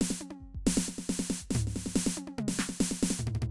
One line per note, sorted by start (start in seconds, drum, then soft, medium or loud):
0.00 snare loud
0.10 snare medium
0.21 high tom medium
0.30 high tom medium
0.40 kick soft
0.54 kick soft
0.66 snare loud
0.77 snare loud
0.88 snare medium
1.09 snare medium
1.30 snare medium
1.40 kick soft
1.50 snare medium
1.55 floor tom loud
1.67 snare soft
1.76 snare medium
1.95 snare loud
2.06 snare loud
2.17 high tom medium
2.27 high tom medium
2.38 mid tom loud
2.48 snare loud
2.59 snare medium
2.69 snare medium
2.80 snare loud
2.91 snare medium
3.02 snare loud
3.10 snare medium
3.19 floor tom medium
3.27 floor tom medium
3.35 floor tom medium
3.42 floor tom loud